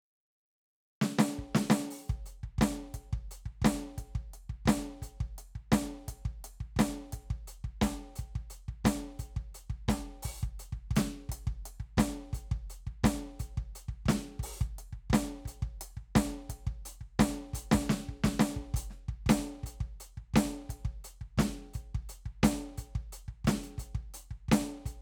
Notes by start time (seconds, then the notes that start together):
1.01 snare
1.19 snare
1.38 kick
1.55 snare
1.70 snare
1.91 open hi-hat
2.08 kick, hi-hat pedal
2.26 closed hi-hat
2.43 kick
2.58 kick, snare, closed hi-hat
2.94 kick, closed hi-hat
3.13 kick
3.31 closed hi-hat
3.46 kick
3.62 closed hi-hat, kick, snare
3.98 kick, closed hi-hat
4.15 kick
4.33 closed hi-hat
4.49 kick
4.66 closed hi-hat, kick, snare
5.02 closed hi-hat, kick
5.20 kick
5.38 closed hi-hat
5.55 kick
5.72 kick, snare, closed hi-hat
6.08 kick, closed hi-hat
6.25 kick
6.44 closed hi-hat
6.60 kick
6.76 kick, snare, closed hi-hat
7.12 kick, closed hi-hat
7.30 kick
7.47 closed hi-hat
7.64 kick
7.81 closed hi-hat, kick, snare
8.16 closed hi-hat, kick
8.35 kick
8.50 closed hi-hat
8.68 kick
8.85 closed hi-hat, kick, snare
9.19 closed hi-hat, kick
9.36 kick
9.55 closed hi-hat
9.70 kick
9.88 closed hi-hat, kick, snare
10.22 open hi-hat, kick
10.40 kick, hi-hat pedal
10.59 closed hi-hat
10.72 kick
10.91 kick
10.96 closed hi-hat, snare
11.29 kick, closed hi-hat
11.47 kick
11.66 closed hi-hat
11.80 kick
11.97 closed hi-hat, kick, snare
12.33 closed hi-hat, kick
12.51 kick
12.70 closed hi-hat
12.87 kick
13.04 closed hi-hat, kick, snare
13.40 closed hi-hat, kick
13.57 kick
13.75 closed hi-hat
13.88 kick
14.06 closed hi-hat, kick, snare
14.39 open hi-hat, kick
14.58 kick, hi-hat pedal
14.78 closed hi-hat
14.93 kick
15.10 closed hi-hat, kick, snare
15.45 closed hi-hat, kick
15.62 kick
15.81 closed hi-hat
15.97 kick
16.15 closed hi-hat, kick, snare
16.49 kick, closed hi-hat
16.67 kick
16.85 closed hi-hat
17.01 kick
17.19 kick, snare, closed hi-hat
17.48 snare
17.53 closed hi-hat, kick
17.71 kick, snare
17.89 snare
18.08 kick
18.24 kick, snare
18.39 snare
18.56 kick
18.74 closed hi-hat, kick
18.90 snare
19.08 kick
19.26 closed hi-hat, kick, snare
19.63 closed hi-hat, kick
19.80 kick
20.00 closed hi-hat
20.17 kick
20.34 closed hi-hat, kick, snare
20.69 kick, closed hi-hat
20.85 kick
21.04 closed hi-hat
21.21 kick
21.38 closed hi-hat, kick, snare
21.74 closed hi-hat, kick
21.95 kick
22.09 closed hi-hat
22.26 kick
22.43 closed hi-hat, kick, snare
22.78 closed hi-hat, kick
22.95 kick
23.12 closed hi-hat
23.28 kick
23.45 closed hi-hat, kick, snare
23.63 closed hi-hat
23.78 closed hi-hat, kick
23.95 kick
24.14 closed hi-hat
24.31 kick
24.48 closed hi-hat, kick, snare
24.86 closed hi-hat, kick